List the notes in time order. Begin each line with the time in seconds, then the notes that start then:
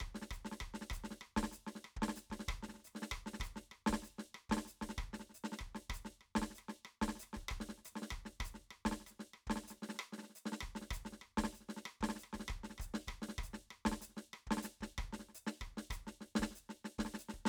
0.01 kick, cross-stick
0.15 snare
0.22 snare
0.31 kick, cross-stick, hi-hat pedal
0.45 snare
0.52 snare
0.61 kick, cross-stick
0.74 snare
0.82 snare
0.91 kick, cross-stick, hi-hat pedal
1.04 snare
1.11 snare
1.22 cross-stick
1.37 kick, snare
1.44 snare
1.52 snare, hi-hat pedal
1.67 snare
1.76 snare
1.85 cross-stick
1.97 kick
2.03 snare
2.09 snare
2.16 snare, hi-hat pedal
2.31 kick, snare
2.40 snare
2.49 kick, cross-stick
2.63 snare
2.69 snare
2.75 snare
2.79 snare
2.85 cross-stick, hi-hat pedal
2.94 snare
2.96 snare
3.03 snare
3.12 kick, cross-stick
3.27 snare
3.34 snare
3.40 kick, cross-stick, hi-hat pedal
3.57 snare
3.72 cross-stick
3.87 kick, snare
3.93 snare
4.02 snare, hi-hat pedal
4.19 snare
4.35 cross-stick
4.50 kick, snare
4.58 snare
4.66 snare, hi-hat pedal
4.74 snare
4.82 kick, snare
4.90 snare
4.98 kick, cross-stick
5.14 snare
5.20 snare
5.30 snare
5.35 hi-hat pedal
5.45 snare
5.53 snare
5.60 kick, cross-stick
5.75 snare
5.90 kick, cross-stick
5.94 hi-hat pedal
6.05 snare
6.21 cross-stick
6.36 kick, snare
6.42 snare
6.51 snare
6.55 cross-stick, hi-hat pedal
6.69 snare
6.86 cross-stick
7.02 kick, snare
7.09 snare
7.16 snare, hi-hat pedal
7.24 cross-stick
7.34 kick, snare
7.49 kick, cross-stick
7.61 snare
7.69 snare
7.78 snare
7.85 cross-stick, hi-hat pedal
7.92 snare
7.96 snare
8.03 snare
8.11 kick, cross-stick
8.26 snare
8.41 kick, cross-stick
8.45 hi-hat pedal
8.55 snare
8.71 cross-stick
8.86 kick, snare
8.92 snare
9.01 snare
9.07 cross-stick, hi-hat pedal
9.11 snare
9.20 snare
9.34 cross-stick
9.48 kick, snare
9.56 snare
9.64 snare
9.68 cross-stick, snare, hi-hat pedal
9.76 snare
9.83 snare
9.90 snare
9.95 snare
10.00 cross-stick
10.13 snare
10.19 snare
10.23 snare
10.30 snare
10.36 cross-stick, hi-hat pedal
10.46 snare
10.53 snare
10.61 kick, cross-stick
10.76 snare
10.82 snare
10.91 kick, cross-stick, hi-hat pedal
11.06 snare
11.13 snare
11.22 cross-stick
11.38 kick, snare
11.44 snare
11.53 snare, hi-hat pedal
11.61 snare
11.69 snare
11.77 snare
11.86 cross-stick
12.01 kick, snare
12.10 snare
12.16 snare, hi-hat pedal
12.24 cross-stick
12.33 kick, snare
12.40 snare
12.49 kick, cross-stick
12.64 snare
12.70 snare
12.79 kick, cross-stick, hi-hat pedal
12.95 snare
13.08 kick, cross-stick
13.23 snare
13.29 snare
13.39 kick, cross-stick
13.44 kick, hi-hat pedal
13.54 snare
13.71 cross-stick
13.86 kick, snare
13.92 snare
14.02 snare, hi-hat pedal
14.10 snare
14.17 snare
14.34 cross-stick
14.47 kick
14.51 snare
14.58 snare
14.63 snare, hi-hat pedal
14.81 kick, snare
14.99 kick, cross-stick
15.13 snare
15.20 snare
15.29 snare
15.35 hi-hat pedal
15.47 snare
15.62 kick, cross-stick
15.78 snare
15.91 kick, cross-stick, hi-hat pedal
16.08 snare
16.21 snare
16.36 kick, snare
16.43 snare
16.51 snare
16.56 hi-hat pedal
16.70 snare
16.85 snare
16.99 kick, snare
17.06 snare
17.14 snare
17.19 hi-hat pedal
17.29 snare
17.34 kick
17.46 snare